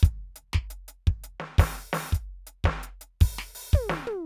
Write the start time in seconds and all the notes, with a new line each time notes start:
0.01 kick, hi-hat pedal
0.05 closed hi-hat
0.37 closed hi-hat
0.54 kick, snare
0.71 closed hi-hat
0.89 closed hi-hat
1.08 kick
1.24 closed hi-hat
1.41 snare
1.59 open hi-hat, kick, snare
1.94 open hi-hat, snare
2.11 kick, hi-hat pedal
2.15 closed hi-hat
2.48 closed hi-hat
2.65 kick, snare
2.84 closed hi-hat
3.02 closed hi-hat
3.21 open hi-hat, kick
3.39 snare
3.56 open hi-hat
3.74 kick, high tom
3.90 snare
4.07 mid tom